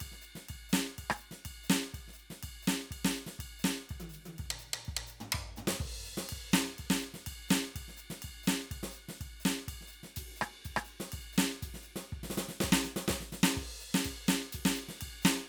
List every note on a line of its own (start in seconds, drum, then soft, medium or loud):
0.01 kick soft
0.01 ride bell loud
0.12 snare soft
0.22 hi-hat pedal medium
0.22 ride soft
0.36 snare medium
0.49 kick soft
0.49 ride bell medium
0.56 kick soft
0.70 hi-hat pedal medium
0.74 snare loud
0.99 kick soft
0.99 ride bell medium
1.04 kick soft
1.11 cross-stick medium
1.17 hi-hat pedal medium
1.21 ride soft
1.32 snare medium
1.46 kick soft
1.46 ride bell loud
1.52 kick soft
1.64 hi-hat pedal medium
1.70 snare loud
1.94 kick soft
1.94 ride bell medium
2.00 kick soft
2.08 snare soft
2.14 hi-hat pedal medium
2.19 ride soft
2.31 snare medium
2.43 kick soft
2.43 ride bell loud
2.63 hi-hat pedal medium
2.68 snare medium
2.91 kick soft
2.91 ride bell loud
2.97 kick soft
3.05 snare medium
3.10 hi-hat pedal medium
3.16 ride soft
3.27 snare medium
3.40 kick soft
3.40 ride bell loud
3.45 kick soft
3.60 hi-hat pedal medium
3.65 snare medium
3.90 kick soft
3.90 ride bell medium
3.97 kick soft
3.97 high tom medium
4.10 hi-hat pedal medium
4.14 ride medium
4.26 high tom medium
4.39 kick soft
4.39 ride bell medium
4.46 kick soft
4.51 mid tom loud
4.59 hi-hat pedal medium
4.63 ride bell soft
4.74 mid tom loud
4.86 kick soft
4.86 ride bell soft
4.95 kick soft
4.95 mid tom loud
5.07 hi-hat pedal medium
5.07 ride soft
5.21 floor tom loud
5.33 kick soft
5.33 floor tom loud
5.42 kick soft
5.57 floor tom medium
5.57 hi-hat pedal medium
5.68 snare loud
5.81 kick medium
5.81 crash loud
5.86 kick soft
5.93 kick soft
6.06 hi-hat pedal medium
6.18 snare medium
6.30 kick soft
6.30 ride bell loud
6.39 kick soft
6.52 snare loud
6.52 hi-hat pedal medium
6.79 kick soft
6.79 ride bell medium
6.91 snare loud
7.00 hi-hat pedal medium
7.00 ride soft
7.14 snare medium
7.27 kick soft
7.27 ride bell loud
7.33 kick soft
7.49 snare loud
7.49 hi-hat pedal medium
7.76 kick soft
7.76 ride bell loud
7.82 kick soft
7.89 snare soft
7.97 hi-hat pedal medium
7.97 ride soft
8.11 snare medium
8.23 kick soft
8.23 ride bell loud
8.30 kick soft
8.44 hi-hat pedal medium
8.48 snare loud
8.72 kick soft
8.72 ride bell medium
8.77 kick soft
8.84 snare medium
8.92 hi-hat pedal medium
8.96 ride soft
9.09 snare medium
9.21 kick soft
9.21 ride bell medium
9.27 kick soft
9.41 hi-hat pedal medium
9.46 snare loud
9.68 kick soft
9.68 ride bell loud
9.74 kick soft
9.82 snare soft
9.88 hi-hat pedal medium
9.93 ride soft
10.04 snare soft
10.17 kick soft
10.17 ride loud
10.37 hi-hat pedal medium
10.42 cross-stick medium
10.65 kick soft
10.65 ride medium
10.71 kick soft
10.77 cross-stick medium
10.85 hi-hat pedal medium
10.85 ride soft
11.01 snare medium
11.13 kick soft
11.13 ride bell loud
11.20 kick soft
11.20 ride soft
11.33 hi-hat pedal medium
11.38 snare loud
11.63 kick soft
11.63 ride loud
11.69 kick soft
11.75 snare medium
11.83 hi-hat pedal medium
11.96 snare medium
12.13 kick soft
12.13 snare soft
12.19 kick soft
12.24 snare medium
12.31 snare medium
12.31 hi-hat pedal medium
12.38 snare loud
12.49 snare medium
12.61 kick soft
12.61 snare loud
12.71 kick soft
12.71 snare loud
12.84 snare soft
12.84 hi-hat pedal medium
12.97 snare loud
13.08 kick soft
13.08 snare loud
13.17 kick soft
13.21 snare medium
13.33 snare medium
13.33 hi-hat pedal medium
13.44 snare loud
13.57 kick soft
13.57 crash loud
13.64 kick soft
13.81 hi-hat pedal medium
13.95 snare loud
14.05 kick soft
14.05 ride bell loud
14.12 kick soft
14.28 snare loud
14.28 hi-hat pedal medium
14.53 kick soft
14.53 ride loud
14.66 snare loud
14.76 hi-hat pedal medium
14.76 ride soft
14.89 snare medium
15.01 kick soft
15.01 ride bell loud
15.09 kick soft
15.23 snare loud
15.23 hi-hat pedal medium
15.45 hi-hat pedal soft